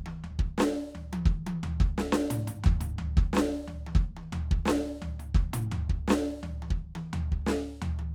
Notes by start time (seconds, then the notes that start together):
0.07 high tom
0.25 floor tom
0.40 kick
0.49 kick
0.59 snare
0.61 snare
0.96 floor tom
1.14 high tom
1.26 kick
1.47 high tom
1.64 floor tom
1.81 kick
1.99 snare
2.13 snare
2.31 mid tom
2.48 mid tom
2.65 kick, floor tom
2.82 mid tom
2.99 floor tom
3.18 kick
3.34 snare
3.38 snare
3.69 floor tom
3.87 high tom
3.96 kick
4.18 high tom
4.33 floor tom
4.52 kick
4.63 kick, snare
4.69 snare
5.03 floor tom
5.20 mid tom
5.36 kick, floor tom
5.54 mid tom
5.72 floor tom
5.90 kick
6.09 snare
6.11 snare
6.44 floor tom
6.63 high tom
6.71 kick
6.96 high tom
7.14 floor tom
7.33 kick
7.42 kick
7.47 snare
7.49 snare
7.83 floor tom
8.00 high tom